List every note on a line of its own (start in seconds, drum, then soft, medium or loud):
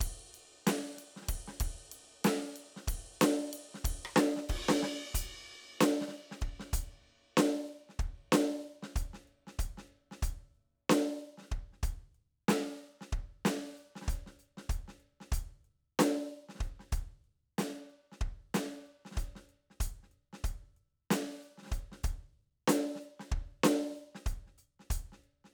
0.01 kick medium
0.01 ride loud
0.30 ride soft
0.35 ride soft
0.67 snare loud
0.67 ride loud
0.97 snare soft
0.97 ride medium
1.16 snare soft
1.16 ride soft
1.22 snare soft
1.26 kick medium
1.26 snare soft
1.26 ride loud
1.48 snare soft
1.61 kick medium
1.61 ride loud
1.92 ride medium
2.25 snare loud
2.25 ride loud
2.57 ride medium
2.77 snare soft
2.88 kick medium
2.88 ride loud
3.22 snare loud
3.22 ride loud
3.54 ride medium
3.75 snare soft
3.85 kick medium
3.85 ride loud
4.06 cross-stick medium
4.16 snare loud
4.37 snare soft
4.50 kick medium
4.50 ride loud
4.69 snare loud
4.83 snare medium
5.15 closed hi-hat loud
5.15 kick medium
5.81 snare loud
5.81 closed hi-hat loud
6.02 snare soft
6.09 snare soft
6.11 snare soft
6.11 closed hi-hat soft
6.32 snare soft
6.42 kick medium
6.42 closed hi-hat soft
6.60 snare soft
6.74 closed hi-hat loud
6.74 kick medium
7.38 snare loud
7.38 closed hi-hat medium
7.68 closed hi-hat soft
7.89 snare soft
8.00 kick medium
8.00 closed hi-hat soft
8.33 closed hi-hat medium
8.33 snare loud
8.65 closed hi-hat soft
8.83 snare medium
8.96 closed hi-hat medium
8.96 kick medium
9.14 snare soft
9.28 closed hi-hat soft
9.47 snare soft
9.59 closed hi-hat medium
9.59 kick medium
9.78 snare soft
9.91 closed hi-hat soft
10.12 snare soft
10.23 closed hi-hat medium
10.23 kick medium
10.55 closed hi-hat soft
10.90 closed hi-hat medium
10.90 snare loud
11.22 closed hi-hat soft
11.38 snare soft
11.42 snare soft
11.52 kick medium
11.52 closed hi-hat soft
11.73 snare soft
11.84 closed hi-hat medium
11.84 kick medium
12.15 closed hi-hat soft
12.49 closed hi-hat medium
12.49 snare loud
13.01 snare soft
13.13 kick medium
13.13 closed hi-hat soft
13.46 closed hi-hat medium
13.46 snare loud
13.78 closed hi-hat soft
13.96 snare soft
14.02 snare soft
14.06 kick medium
14.06 snare soft
14.09 closed hi-hat medium
14.09 snare soft
14.27 snare soft
14.40 closed hi-hat soft
14.58 snare soft
14.70 closed hi-hat medium
14.70 kick medium
14.88 snare soft
15.01 closed hi-hat soft
15.21 snare soft
15.32 closed hi-hat medium
15.32 kick medium
15.65 closed hi-hat soft
16.00 closed hi-hat medium
16.00 snare loud
16.49 snare soft
16.55 snare soft
16.59 closed hi-hat soft
16.59 kick medium
16.59 snare soft
16.80 snare soft
16.93 closed hi-hat medium
16.93 kick medium
17.25 closed hi-hat soft
17.59 closed hi-hat medium
17.59 snare loud
17.91 closed hi-hat soft
18.12 snare soft
18.22 kick medium
18.22 closed hi-hat soft
18.55 closed hi-hat medium
18.55 snare loud
18.87 closed hi-hat soft
19.06 snare soft
19.12 snare soft
19.15 snare soft
19.17 closed hi-hat medium
19.17 kick medium
19.17 snare soft
19.36 snare soft
19.50 closed hi-hat soft
19.71 snare soft
19.81 closed hi-hat medium
19.81 kick medium
20.03 snare soft
20.12 closed hi-hat soft
20.33 snare soft
20.45 closed hi-hat medium
20.45 kick medium
20.77 closed hi-hat soft
21.11 closed hi-hat medium
21.11 snare loud
21.43 closed hi-hat soft
21.58 snare soft
21.63 snare soft
21.66 snare soft
21.68 snare soft
21.72 closed hi-hat soft
21.72 kick medium
21.92 snare soft
22.04 closed hi-hat medium
22.04 kick medium
22.68 closed hi-hat loud
22.68 snare loud
22.96 snare soft
23.02 closed hi-hat soft
23.20 snare soft
23.32 kick medium
23.64 closed hi-hat medium
23.64 snare loud
23.91 snare soft
23.93 closed hi-hat soft
23.93 snare soft
24.15 snare soft
24.27 closed hi-hat medium
24.27 kick medium
24.47 snare soft
24.59 closed hi-hat soft
24.80 snare soft
24.91 closed hi-hat medium
24.91 kick medium
25.13 snare soft
25.24 closed hi-hat soft
25.45 snare soft